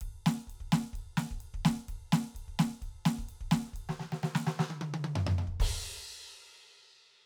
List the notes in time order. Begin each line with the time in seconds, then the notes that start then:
0.03 kick, ride
0.27 snare, ride
0.48 kick, ride
0.61 kick
0.73 snare, ride
0.94 kick, ride
1.18 snare, ride
1.32 kick
1.41 ride
1.55 kick
1.66 snare, ride
1.89 kick, ride
2.13 snare, ride
2.36 kick, ride
2.49 kick
2.60 snare, ride
2.82 kick, ride
3.06 snare, ride
3.19 kick
3.29 ride
3.41 kick
3.52 snare, ride
3.67 snare
3.74 kick, ride
3.90 snare
4.00 snare
4.13 snare
4.24 snare
4.36 snare
4.47 snare
4.60 snare
4.71 high tom
4.82 high tom
4.95 high tom
5.05 high tom
5.16 floor tom
5.27 floor tom
5.39 floor tom
5.48 kick
5.61 kick, crash